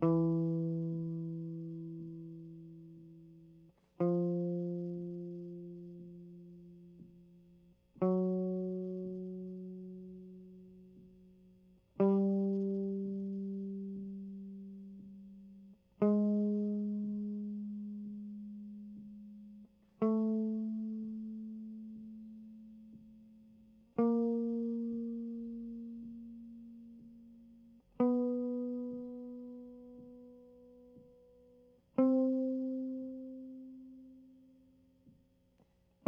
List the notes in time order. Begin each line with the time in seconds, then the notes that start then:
0.03 E3
4.01 F3
8.03 F#3
12.00 G3
16.02 G#3
20.02 A3
23.99 A#3
28.01 B3
28.31 B3
31.98 C4